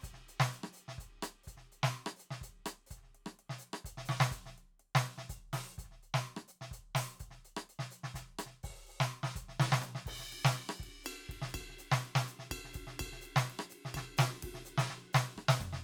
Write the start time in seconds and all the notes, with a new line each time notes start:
0.01 closed hi-hat, kick, hi-hat pedal
0.14 snare
0.21 snare
0.29 closed hi-hat
0.40 snare
0.53 closed hi-hat
0.64 cross-stick
0.73 closed hi-hat, hi-hat pedal
0.88 snare
0.98 closed hi-hat, kick
1.23 closed hi-hat, cross-stick
1.44 kick, hi-hat pedal
1.48 closed hi-hat
1.57 snare
1.72 closed hi-hat
1.83 snare
1.96 closed hi-hat
2.06 cross-stick
2.16 closed hi-hat, hi-hat pedal
2.31 snare
2.41 closed hi-hat, kick
2.66 closed hi-hat, cross-stick
2.87 hi-hat pedal
2.91 closed hi-hat, kick
2.97 snare
3.03 snare
3.15 closed hi-hat
3.26 cross-stick
3.31 hi-hat pedal
3.39 closed hi-hat
3.50 snare
3.59 closed hi-hat, hi-hat pedal
3.73 cross-stick
3.85 closed hi-hat, kick
3.98 snare
4.05 snare, hi-hat pedal
4.20 snare
4.32 closed hi-hat, kick
4.37 kick
4.46 snare
4.58 closed hi-hat
4.80 closed hi-hat
4.95 snare
5.06 closed hi-hat
5.18 snare
5.30 open hi-hat, kick
5.35 kick
5.53 open hi-hat, snare
5.72 hi-hat pedal
5.78 closed hi-hat, kick
5.84 kick, snare
5.91 snare
6.03 closed hi-hat
6.14 snare
6.27 closed hi-hat
6.37 cross-stick
6.48 hi-hat pedal
6.61 snare
6.71 closed hi-hat, kick
6.95 open hi-hat, snare
7.15 hi-hat pedal
7.20 closed hi-hat, kick
7.31 snare
7.40 snare
7.45 closed hi-hat
7.57 cross-stick
7.69 closed hi-hat
7.79 snare
7.91 closed hi-hat, hi-hat pedal
8.04 snare
8.14 closed hi-hat, kick, snare
8.39 closed hi-hat, cross-stick
8.46 snare
8.63 open hi-hat, kick
8.70 kick, snare
8.76 snare
8.88 open hi-hat
9.00 snare
9.04 hi-hat pedal
9.13 closed hi-hat
9.23 snare
9.36 closed hi-hat, kick
9.42 kick
9.45 kick, snare
9.60 snare
9.72 snare
9.82 hi-hat pedal, high tom
9.95 snare
10.06 kick, crash
10.19 snare
10.33 ride
10.45 snare
10.52 hi-hat pedal
10.57 ride
10.69 cross-stick
10.75 hi-hat pedal
10.80 kick, ride
10.86 kick
10.88 kick
11.04 hi-hat pedal, ride bell
11.29 kick, ride
11.35 kick
11.38 kick
11.42 snare
11.49 hi-hat pedal
11.54 kick, ride bell
11.61 kick
11.69 snare
11.79 hi-hat pedal, ride
11.92 snare
12.05 ride
12.15 snare
12.28 hi-hat pedal, ride
12.39 snare
12.51 kick, ride bell
12.57 kick
12.65 snare
12.73 kick, hi-hat pedal, ride
12.87 snare
13.00 kick, ride bell
13.09 kick, snare
13.21 hi-hat pedal
13.26 ride
13.36 snare
13.50 ride
13.59 cross-stick
13.70 hi-hat pedal, ride
13.85 snare
13.94 kick, snare, ride bell
14.17 snare, hi-hat pedal, ride
14.43 kick, ride
14.54 snare
14.65 hi-hat pedal
14.70 snare
14.78 snare
14.87 snare, hi-hat pedal
15.13 snare, hi-hat pedal
15.37 kick, cross-stick
15.49 snare
15.60 kick, hi-hat pedal, mid tom
15.73 snare